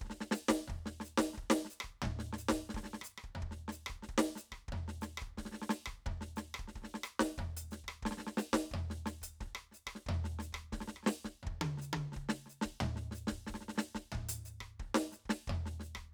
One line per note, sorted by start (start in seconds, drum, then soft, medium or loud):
0.02 kick soft
0.02 snare soft
0.11 snare soft
0.21 snare soft
0.32 snare medium
0.32 hi-hat pedal medium
0.49 kick soft
0.49 snare loud
0.68 kick soft
0.68 floor tom medium
0.86 snare soft
1.01 snare soft
1.05 hi-hat pedal soft
1.18 kick soft
1.18 snare loud
1.34 snare soft
1.38 kick soft
1.51 snare loud
1.65 snare soft
1.71 hi-hat pedal medium
1.81 kick soft
1.81 cross-stick medium
2.03 kick soft
2.03 floor tom loud
2.20 snare soft
2.33 snare soft
2.39 hi-hat pedal medium
2.49 kick soft
2.49 snare medium
2.70 snare soft
2.75 kick soft
2.75 snare soft
2.84 snare soft
2.85 snare soft
3.02 cross-stick medium
3.02 hi-hat pedal medium
3.18 cross-stick medium
3.24 kick soft
3.36 floor tom medium
3.43 kick soft
3.52 snare soft
3.69 snare soft
3.73 hi-hat pedal medium
3.87 kick soft
3.87 cross-stick medium
4.03 snare soft
4.09 kick soft
4.19 snare loud
4.36 snare soft
4.36 hi-hat pedal medium
4.52 kick soft
4.52 cross-stick medium
4.69 kick soft
4.69 floor tom medium
4.89 snare soft
5.02 snare soft
5.02 hi-hat pedal soft
5.18 cross-stick medium
5.22 kick soft
5.38 kick soft
5.38 snare soft
5.46 snare soft
5.52 snare soft
5.54 snare soft
5.70 snare medium
5.70 hi-hat pedal soft
5.87 kick soft
5.87 cross-stick medium
6.07 kick medium
6.07 floor tom medium
6.22 snare soft
6.37 snare medium
6.37 hi-hat pedal soft
6.55 cross-stick medium
6.60 kick soft
6.68 snare soft
6.76 kick soft
6.76 snare soft
6.83 snare soft
6.84 snare soft
6.95 snare soft
7.04 cross-stick medium
7.04 hi-hat pedal medium
7.20 kick soft
7.20 snare medium
7.38 kick soft
7.38 floor tom medium
7.57 open hi-hat medium
7.72 snare soft
7.72 hi-hat pedal soft
7.85 kick soft
7.89 cross-stick medium
8.03 kick soft
8.03 snare medium
8.12 snare soft
8.18 snare soft
8.20 snare soft
8.27 snare soft
8.38 snare medium
8.38 hi-hat pedal medium
8.54 kick soft
8.54 snare loud
8.72 kick soft
8.72 floor tom medium
8.91 snare soft
9.06 snare medium
9.06 hi-hat pedal soft
9.22 closed hi-hat medium
9.22 kick soft
9.41 kick soft
9.41 snare soft
9.56 cross-stick medium
9.72 snare soft
9.72 hi-hat pedal soft
9.87 kick soft
9.87 cross-stick medium
9.96 snare soft
10.07 kick soft
10.07 floor tom loud
10.25 snare soft
10.39 snare soft
10.39 hi-hat pedal soft
10.53 kick soft
10.53 cross-stick medium
10.73 kick soft
10.73 snare soft
10.81 snare soft
10.88 snare soft
10.97 cross-stick soft
11.04 snare soft
11.07 snare medium
11.13 hi-hat pedal soft
11.25 kick soft
11.25 snare soft
11.44 kick soft
11.44 floor tom medium
11.62 high tom loud
11.78 snare soft
11.82 hi-hat pedal medium
11.94 kick soft
11.94 high tom loud
12.13 snare soft
12.17 kick soft
12.29 snare medium
12.47 snare soft
12.47 hi-hat pedal soft
12.62 kick soft
12.62 snare medium
12.81 kick soft
12.81 floor tom loud
12.97 snare soft
13.12 snare soft
13.12 hi-hat pedal medium
13.28 snare medium
13.32 kick soft
13.47 kick soft
13.47 snare soft
13.55 snare soft
13.61 snare soft
13.69 snare soft
13.76 snare soft
13.78 snare medium
13.78 hi-hat pedal soft
13.95 kick soft
13.95 snare soft
14.12 kick soft
14.12 floor tom medium
14.29 closed hi-hat loud
14.46 hi-hat pedal medium
14.50 snare soft
14.61 kick soft
14.61 cross-stick medium
14.80 kick soft
14.80 snare soft
14.95 snare loud
15.13 snare soft
15.13 hi-hat pedal soft
15.26 kick soft
15.30 snare medium
15.48 kick soft
15.48 floor tom medium
15.66 snare soft
15.80 snare soft
15.80 hi-hat pedal soft
15.96 kick soft
15.96 cross-stick medium